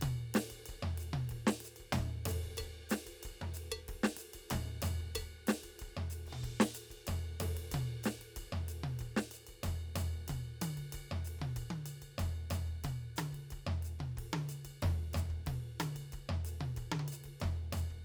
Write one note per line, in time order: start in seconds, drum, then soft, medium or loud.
0.02 kick soft
0.02 mid tom loud
0.02 ride bell medium
0.34 snare loud
0.34 hi-hat pedal medium
0.34 ride medium
0.50 kick soft
0.50 ride bell soft
0.66 kick soft
0.66 ride bell medium
0.83 floor tom medium
0.98 hi-hat pedal medium
0.98 ride medium
1.14 kick soft
1.14 mid tom loud
1.30 kick soft
1.30 ride medium
1.47 snare loud
1.61 hi-hat pedal medium
1.61 ride medium
1.76 kick soft
1.76 ride bell soft
1.93 ride bell medium
1.93 floor tom loud
1.98 kick soft
2.26 floor tom medium
2.26 hi-hat pedal medium
2.26 ride loud
2.44 kick soft
2.58 kick soft
2.58 ride bell medium
2.58 percussion medium
2.90 snare medium
2.90 hi-hat pedal medium
2.90 ride medium
3.07 kick soft
3.07 ride bell soft
3.23 kick soft
3.23 ride bell medium
3.42 floor tom medium
3.54 hi-hat pedal medium
3.54 ride medium
3.71 kick soft
3.71 percussion loud
3.89 kick soft
3.89 ride medium
4.04 snare medium
4.17 hi-hat pedal medium
4.17 ride medium
4.34 kick soft
4.34 ride bell medium
4.51 kick soft
4.51 ride bell medium
4.51 floor tom loud
4.82 floor tom loud
4.82 hi-hat pedal medium
4.82 ride bell medium
5.00 kick soft
5.15 kick soft
5.15 ride bell medium
5.15 percussion loud
5.47 snare loud
5.47 hi-hat pedal medium
5.47 ride medium
5.64 kick soft
5.64 ride bell soft
5.80 kick soft
5.80 ride bell soft
5.97 floor tom medium
6.10 hi-hat pedal medium
6.10 ride medium
6.26 kick soft
6.26 ride medium
6.33 mid tom medium
6.44 kick soft
6.44 ride soft
6.60 snare loud
6.74 hi-hat pedal medium
6.74 ride medium
6.91 kick soft
6.91 ride bell soft
7.07 kick soft
7.07 floor tom medium
7.07 ride bell medium
7.40 floor tom medium
7.40 hi-hat pedal medium
7.40 ride loud
7.55 kick soft
7.55 ride medium
7.72 kick soft
7.72 mid tom loud
7.72 ride bell medium
8.04 snare medium
8.04 hi-hat pedal medium
8.04 ride bell medium
8.19 kick soft
8.19 ride soft
8.37 kick soft
8.37 ride bell medium
8.53 floor tom medium
8.69 hi-hat pedal medium
8.69 ride medium
8.84 kick soft
8.84 mid tom medium
8.99 kick soft
8.99 ride bell soft
9.17 snare medium
9.32 hi-hat pedal medium
9.32 ride bell medium
9.47 kick soft
9.47 ride bell soft
9.64 kick soft
9.64 floor tom medium
9.64 ride bell medium
9.96 floor tom loud
9.96 hi-hat pedal medium
9.96 ride bell medium
10.14 kick soft
10.28 kick soft
10.28 mid tom medium
10.28 ride bell medium
10.62 hi-hat pedal medium
10.62 high tom loud
10.62 ride bell medium
10.77 kick soft
10.77 ride soft
10.93 kick soft
10.93 ride bell medium
11.12 floor tom medium
11.25 hi-hat pedal medium
11.25 ride medium
11.39 kick soft
11.39 mid tom medium
11.57 kick soft
11.57 ride bell medium
11.71 high tom medium
11.86 hi-hat pedal medium
11.86 ride bell medium
12.02 kick soft
12.02 ride bell soft
12.18 kick soft
12.18 floor tom loud
12.18 ride bell medium
12.51 floor tom loud
12.51 hi-hat pedal medium
12.51 ride bell medium
12.67 kick soft
12.84 kick soft
12.84 mid tom medium
12.84 ride bell medium
13.16 hi-hat pedal medium
13.16 high tom medium
13.16 ride bell medium
13.33 kick soft
13.33 ride soft
13.51 kick soft
13.51 ride bell soft
13.67 floor tom loud
13.83 hi-hat pedal medium
13.83 ride soft
13.99 kick soft
13.99 mid tom medium
14.17 kick soft
14.17 ride medium
14.33 high tom loud
14.49 hi-hat pedal medium
14.49 ride bell soft
14.65 kick soft
14.65 ride bell soft
14.82 kick soft
14.82 floor tom loud
14.82 ride medium
15.14 floor tom loud
15.14 hi-hat pedal medium
15.14 ride bell soft
15.30 kick soft
15.47 kick soft
15.47 mid tom medium
15.47 ride medium
15.80 hi-hat pedal medium
15.80 high tom loud
15.80 ride bell medium
15.95 kick soft
15.95 ride bell soft
16.13 kick soft
16.13 ride bell soft
16.29 floor tom loud
16.45 hi-hat pedal medium
16.45 ride medium
16.60 kick soft
16.60 mid tom medium
16.77 kick soft
16.77 ride bell soft
16.92 high tom loud
17.00 high tom medium
17.08 hi-hat pedal medium
17.08 ride bell medium
17.24 kick soft
17.24 ride soft
17.40 kick soft
17.40 floor tom loud
17.40 ride bell soft
17.73 floor tom medium
17.73 hi-hat pedal medium
17.73 ride bell medium
17.90 kick soft